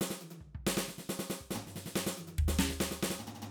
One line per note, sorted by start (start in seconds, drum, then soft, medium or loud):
0.00 snare loud
0.10 snare medium
0.21 high tom medium
0.30 high tom medium
0.40 kick soft
0.54 kick soft
0.66 snare loud
0.77 snare loud
0.88 snare medium
1.09 snare medium
1.30 snare medium
1.40 kick soft
1.50 snare medium
1.55 floor tom loud
1.67 snare soft
1.76 snare medium
1.95 snare loud
2.06 snare loud
2.17 high tom medium
2.27 high tom medium
2.38 mid tom loud
2.48 snare loud
2.59 snare medium
2.69 snare medium
2.80 snare loud
2.91 snare medium
3.02 snare loud
3.10 snare medium
3.19 floor tom medium
3.27 floor tom medium
3.35 floor tom medium
3.42 floor tom loud